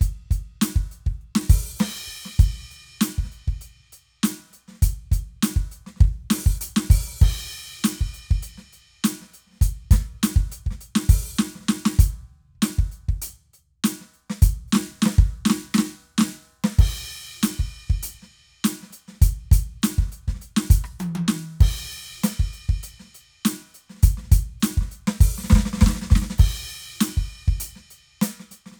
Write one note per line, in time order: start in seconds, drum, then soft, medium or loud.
0.01 closed hi-hat medium
0.01 kick medium
0.31 closed hi-hat medium
0.31 kick medium
0.61 closed hi-hat loud
0.61 snare loud
0.76 kick medium
0.91 closed hi-hat soft
1.06 kick medium
1.21 closed hi-hat soft
1.35 snare loud
1.50 open hi-hat loud
1.50 kick loud
1.79 snare loud
1.79 hi-hat pedal soft
1.79 crash loud
2.07 kick soft
2.07 closed hi-hat soft
2.25 snare soft
2.39 closed hi-hat medium
2.39 kick loud
2.71 closed hi-hat soft
3.01 closed hi-hat loud
3.01 snare loud
3.18 kick medium
3.24 snare soft
3.32 closed hi-hat soft
3.48 kick medium
3.61 closed hi-hat medium
3.93 closed hi-hat medium
4.23 closed hi-hat loud
4.23 snare loud
4.50 snare soft
4.53 closed hi-hat soft
4.53 snare soft
4.68 snare soft
4.71 snare soft
4.73 snare soft
4.82 closed hi-hat loud
4.82 kick loud
5.12 closed hi-hat medium
5.12 kick medium
5.43 closed hi-hat loud
5.43 snare loud
5.56 kick medium
5.71 closed hi-hat soft
5.87 snare soft
5.96 snare soft
6.01 kick loud
6.01 snare soft
6.30 open hi-hat loud
6.30 snare loud
6.46 kick loud
6.55 hi-hat pedal medium
6.61 closed hi-hat loud
6.76 snare loud
6.90 open hi-hat loud
6.90 kick loud
7.21 kick loud
7.21 hi-hat pedal medium
7.21 crash loud
7.51 closed hi-hat soft
7.84 closed hi-hat loud
7.84 snare loud
8.01 kick medium
8.14 closed hi-hat soft
8.31 kick medium
8.43 closed hi-hat medium
8.58 snare soft
8.73 closed hi-hat soft
9.04 closed hi-hat loud
9.04 snare loud
9.22 snare soft
9.30 closed hi-hat medium
9.30 snare soft
9.47 snare soft
9.50 snare soft
9.53 snare soft
9.55 snare soft
9.61 closed hi-hat loud
9.61 kick loud
9.91 closed hi-hat loud
9.91 kick loud
9.91 snare medium
10.23 closed hi-hat loud
10.23 snare loud
10.36 kick loud
10.49 closed hi-hat medium
10.49 snare soft
10.66 kick medium
10.71 snare soft
10.81 closed hi-hat medium
10.96 snare loud
11.09 open hi-hat loud
11.09 kick loud
11.38 snare loud
11.38 hi-hat pedal soft
11.55 snare soft
11.61 snare soft
11.66 snare soft
11.69 snare loud
11.86 snare loud
11.99 open hi-hat loud
11.99 kick loud
12.55 kick soft
12.62 open hi-hat loud
12.62 snare loud
12.62 hi-hat pedal soft
12.79 kick medium
12.92 closed hi-hat soft
13.09 kick medium
13.22 closed hi-hat loud
13.54 closed hi-hat soft
13.84 closed hi-hat loud
13.84 snare loud
14.01 snare soft
14.14 closed hi-hat soft
14.30 snare medium
14.42 open hi-hat loud
14.42 kick loud
14.68 hi-hat pedal soft
14.73 snare loud
14.75 snare loud
15.02 snare loud
15.06 snare loud
15.18 kick loud
15.46 snare loud
15.50 snare loud
15.74 snare loud
15.78 snare loud
16.18 snare loud
16.21 snare loud
16.64 snare loud
16.76 kick loud
16.76 hi-hat pedal soft
16.76 crash loud
17.42 closed hi-hat loud
17.42 kick soft
17.42 snare loud
17.59 kick medium
17.90 kick medium
18.03 closed hi-hat loud
18.22 snare soft
18.64 closed hi-hat loud
18.64 snare loud
18.83 snare soft
18.90 closed hi-hat medium
18.90 snare soft
19.08 snare soft
19.13 snare soft
19.22 closed hi-hat loud
19.22 kick loud
19.52 closed hi-hat loud
19.52 kick loud
19.82 closed hi-hat loud
19.82 snare loud
19.82 hi-hat pedal soft
19.98 kick medium
19.98 snare soft
20.07 snare soft
20.12 closed hi-hat medium
20.28 kick medium
20.28 snare soft
20.35 snare soft
20.40 closed hi-hat medium
20.40 snare soft
20.57 snare loud
20.70 closed hi-hat loud
20.70 kick loud
20.84 cross-stick medium
21.00 hi-hat pedal medium
21.00 high tom loud
21.15 high tom loud
21.25 kick soft
21.25 snare loud
21.25 hi-hat pedal medium
21.61 kick loud
21.61 crash loud
21.91 closed hi-hat medium
22.13 kick soft
22.24 closed hi-hat loud
22.24 snare loud
22.39 kick medium
22.53 closed hi-hat soft
22.69 kick medium
22.83 closed hi-hat medium
23.00 snare soft
23.04 snare soft
23.15 closed hi-hat soft
23.45 closed hi-hat loud
23.45 snare loud
23.74 closed hi-hat soft
23.90 snare soft
23.94 snare soft
23.98 snare soft
24.02 closed hi-hat loud
24.02 kick loud
24.02 snare soft
24.17 snare soft
24.23 snare soft
24.32 closed hi-hat loud
24.32 kick loud
24.60 closed hi-hat loud
24.60 snare loud
24.60 hi-hat pedal soft
24.77 kick medium
24.77 snare soft
24.86 snare soft
24.91 closed hi-hat soft
24.91 snare soft
25.07 snare loud
25.21 open hi-hat loud
25.21 kick loud
25.38 snare medium
25.44 snare medium
25.50 kick loud
25.50 snare loud
25.50 hi-hat pedal medium
25.55 snare loud
25.59 snare medium
25.66 snare medium
25.73 snare medium
25.78 snare medium
25.81 kick loud
25.81 snare loud
25.81 hi-hat pedal medium
25.86 snare loud
25.89 snare medium
25.95 snare medium
26.02 snare medium
26.05 snare soft
26.10 kick loud
26.10 snare medium
26.10 hi-hat pedal soft
26.16 snare loud
26.22 snare medium
26.30 snare medium
26.36 kick soft
26.36 hi-hat pedal medium
26.36 crash loud
26.39 kick loud
26.69 closed hi-hat soft
27.01 closed hi-hat loud
27.01 snare loud
27.17 kick medium
27.30 closed hi-hat soft
27.48 kick medium
27.60 closed hi-hat loud
27.76 snare soft
27.91 closed hi-hat soft
28.22 closed hi-hat loud
28.22 snare loud
28.40 snare soft
28.51 closed hi-hat medium
28.51 snare soft
28.66 snare soft
28.72 snare soft